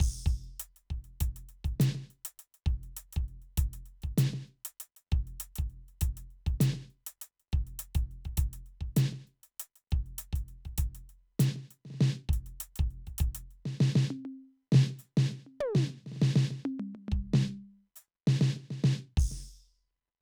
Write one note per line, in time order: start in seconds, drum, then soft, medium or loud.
0.00 kick medium
0.00 crash medium
0.13 closed hi-hat soft
0.26 closed hi-hat soft
0.26 kick medium
0.43 closed hi-hat soft
0.60 closed hi-hat loud
0.76 closed hi-hat soft
0.90 kick soft
0.90 closed hi-hat soft
1.04 closed hi-hat soft
1.20 closed hi-hat loud
1.20 kick medium
1.36 closed hi-hat medium
1.49 closed hi-hat soft
1.64 kick medium
1.64 closed hi-hat soft
1.80 closed hi-hat loud
1.80 kick soft
1.80 snare loud
1.95 snare soft
2.10 closed hi-hat soft
2.25 closed hi-hat loud
2.39 closed hi-hat medium
2.54 closed hi-hat soft
2.66 kick medium
2.66 closed hi-hat soft
2.83 closed hi-hat soft
2.97 closed hi-hat loud
3.13 closed hi-hat medium
3.13 kick medium
3.28 closed hi-hat soft
3.42 closed hi-hat soft
3.57 closed hi-hat loud
3.57 kick medium
3.73 closed hi-hat medium
3.86 closed hi-hat soft
4.02 kick soft
4.02 closed hi-hat soft
4.18 closed hi-hat loud
4.18 snare loud
4.33 snare medium
4.47 closed hi-hat soft
4.65 closed hi-hat loud
4.80 closed hi-hat loud
4.96 closed hi-hat soft
5.12 kick medium
5.12 closed hi-hat soft
5.27 closed hi-hat soft
5.40 closed hi-hat loud
5.56 closed hi-hat medium
5.56 kick medium
5.70 closed hi-hat soft
5.88 closed hi-hat soft
6.01 closed hi-hat loud
6.01 kick medium
6.17 closed hi-hat medium
6.30 closed hi-hat soft
6.46 kick medium
6.46 closed hi-hat soft
6.61 closed hi-hat loud
6.61 snare loud
6.73 snare soft
6.90 closed hi-hat soft
7.07 closed hi-hat loud
7.21 closed hi-hat loud
7.40 closed hi-hat soft
7.52 kick medium
7.52 closed hi-hat soft
7.67 closed hi-hat soft
7.79 closed hi-hat loud
7.95 closed hi-hat medium
7.95 kick medium
8.11 closed hi-hat soft
8.25 kick soft
8.25 closed hi-hat soft
8.37 closed hi-hat loud
8.37 kick medium
8.53 closed hi-hat medium
8.66 closed hi-hat soft
8.81 kick soft
8.96 closed hi-hat loud
8.96 snare loud
9.12 snare soft
9.27 closed hi-hat soft
9.43 closed hi-hat soft
9.60 closed hi-hat loud
9.76 closed hi-hat soft
9.91 kick medium
9.91 closed hi-hat soft
10.06 closed hi-hat soft
10.18 closed hi-hat loud
10.33 closed hi-hat medium
10.33 kick medium
10.48 closed hi-hat soft
10.65 kick soft
10.65 closed hi-hat soft
10.78 closed hi-hat loud
10.78 kick medium
10.95 closed hi-hat medium
11.09 closed hi-hat soft
11.39 closed hi-hat loud
11.39 snare loud
11.56 snare soft
11.71 closed hi-hat soft
11.85 snare soft
11.90 snare soft
11.94 snare soft
12.01 snare loud
12.29 kick medium
12.33 closed hi-hat medium
12.46 closed hi-hat soft
12.60 closed hi-hat loud
12.76 closed hi-hat medium
12.76 kick medium
12.91 closed hi-hat soft
13.07 closed hi-hat soft
13.07 kick soft
13.18 closed hi-hat loud
13.18 kick medium
13.35 closed hi-hat loud
13.51 closed hi-hat soft
13.66 snare medium
13.80 snare loud
13.96 snare loud
14.10 high tom medium
14.25 high tom medium
14.72 snare loud
14.74 snare loud
14.90 snare soft
14.99 hi-hat pedal medium
15.17 snare loud
15.31 snare soft
15.46 high tom soft
15.60 high tom loud
15.75 snare loud
15.89 snare soft
16.06 snare soft
16.12 snare soft
16.16 snare soft
16.22 snare loud
16.36 snare loud
16.51 snare soft
16.65 high tom loud
16.80 mid tom medium
16.95 mid tom medium
17.08 kick medium
17.08 mid tom medium
17.34 snare loud
17.34 mid tom loud
17.96 hi-hat pedal loud
18.27 snare loud
18.41 snare loud
18.56 snare soft
18.71 snare medium
18.84 snare loud
19.17 kick medium
19.17 crash medium
19.31 snare soft